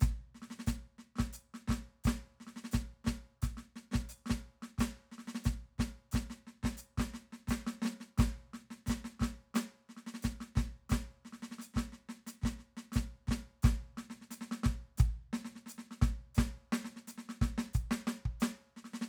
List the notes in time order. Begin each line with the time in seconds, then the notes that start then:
0.01 kick, snare, hi-hat pedal
0.35 snare
0.42 snare
0.51 snare
0.60 snare
0.67 kick, snare, hi-hat pedal
0.99 snare
1.16 snare
1.19 kick, snare
1.33 hi-hat pedal
1.55 snare
1.68 kick, snare
1.71 snare
2.05 kick, snare, hi-hat pedal
2.08 snare
2.41 snare
2.47 snare
2.57 snare
2.65 snare
2.72 kick, snare, hi-hat pedal
3.05 snare
3.07 kick, snare
3.42 kick, snare, hi-hat pedal
3.58 snare
3.76 snare
3.92 snare
3.94 kick, snare
4.10 hi-hat pedal
4.26 snare
4.30 kick, snare
4.63 snare
4.79 kick, snare, hi-hat pedal
4.81 snare
5.12 snare
5.19 snare
5.28 snare
5.35 snare
5.45 kick, snare, hi-hat pedal
5.79 kick, snare
5.80 snare
6.12 kick, snare, hi-hat pedal
6.16 snare
6.31 snare
6.47 snare
6.63 kick, snare
6.65 snare
6.78 hi-hat pedal
6.98 kick, snare
7.00 snare
7.14 snare
7.33 snare
7.48 kick, snare, hi-hat pedal
7.51 snare
7.67 snare
7.82 snare
7.86 snare
8.01 snare
8.18 kick, snare, hi-hat pedal
8.20 snare
8.54 snare
8.71 snare
8.87 kick, snare, hi-hat pedal
8.90 snare
9.05 snare
9.20 kick, snare
9.23 snare
9.55 snare, hi-hat pedal
9.90 snare
9.97 snare
10.07 snare
10.14 snare
10.23 kick, hi-hat pedal
10.41 snare
10.56 kick, snare
10.58 snare
10.90 kick, snare, hi-hat pedal
10.93 snare
11.26 snare
11.33 snare
11.43 snare
11.52 snare
11.59 snare, hi-hat pedal
11.75 kick, snare
11.77 snare
11.93 snare
12.09 snare
12.27 snare, hi-hat pedal
12.42 kick, snare
12.46 snare
12.59 snare
12.77 snare
12.93 snare, hi-hat pedal
12.96 kick, snare
13.28 kick, snare
13.31 snare
13.63 kick, snare, hi-hat pedal
13.66 snare
13.98 snare
14.11 snare
14.22 snare
14.31 snare, hi-hat pedal
14.41 snare
14.52 snare
14.64 kick, snare
14.98 kick, snare, hi-hat pedal
15.34 snare
15.45 snare
15.56 snare
15.67 snare, hi-hat pedal
15.79 snare
15.91 snare
16.02 kick, snare
16.35 kick, snare, hi-hat pedal
16.73 snare
16.85 snare
16.97 snare
17.08 snare, hi-hat pedal
17.18 snare
17.29 snare
17.42 kick, snare
17.58 snare
17.74 kick, hi-hat pedal
17.92 snare
18.08 snare
18.26 kick
18.41 snare, hi-hat pedal
18.77 snare
18.85 snare
18.94 snare
19.02 snare